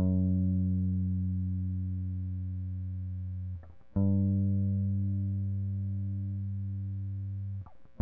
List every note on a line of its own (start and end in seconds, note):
0.00 3.61 F#2
3.99 7.66 G2